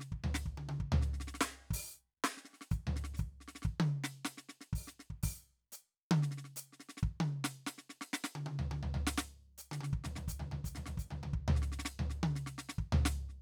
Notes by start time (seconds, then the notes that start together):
0.01 snare
0.12 kick
0.24 floor tom
0.35 snare
0.46 kick
0.58 high tom
0.69 high tom
0.81 kick
0.93 floor tom
1.02 snare
1.14 snare
1.21 snare
1.28 snare
1.35 snare
1.41 snare
1.71 open hi-hat, kick
2.25 snare
2.38 snare
2.45 snare
2.51 snare
2.54 snare
2.62 snare
2.71 kick, hi-hat pedal
2.88 floor tom
2.96 snare
3.05 snare
3.15 snare, hi-hat pedal
3.20 kick
3.41 snare
3.48 snare
3.56 snare
3.63 kick, snare
3.81 high tom
4.04 snare
4.25 snare, hi-hat pedal
4.38 snare
4.49 snare
4.61 snare
4.73 open hi-hat, kick
4.88 snare
5.00 snare
5.11 kick
5.24 open hi-hat, kick
5.73 hi-hat pedal
6.12 high tom
6.23 snare
6.32 snare
6.38 snare
6.45 snare
6.57 hi-hat pedal
6.73 snare
6.80 snare
6.89 snare
6.98 snare
7.03 kick
7.21 high tom
7.45 snare
7.67 snare
7.79 snare
7.90 snare
8.02 snare
8.14 snare
8.25 snare
8.36 high tom
8.47 high tom
8.60 floor tom
8.72 high tom
8.83 floor tom
8.95 floor tom
9.07 snare
9.18 snare
9.59 hi-hat pedal
9.72 snare, high tom
9.81 snare, high tom
9.94 kick
10.04 snare, floor tom
10.16 snare, floor tom
10.28 kick, hi-hat pedal
10.40 floor tom, high tom
10.52 floor tom, high tom
10.65 kick, hi-hat pedal
10.76 snare, floor tom
10.86 snare, floor tom
10.98 kick, hi-hat pedal
11.11 floor tom, high tom
11.24 floor tom, high tom
11.34 kick
11.48 floor tom
11.56 snare
11.63 snare
11.72 snare
11.80 snare
11.86 snare
12.00 floor tom
12.10 snare
12.24 high tom
12.36 snare
12.47 snare
12.59 snare
12.70 snare
12.79 kick
12.93 floor tom
13.06 snare
13.30 snare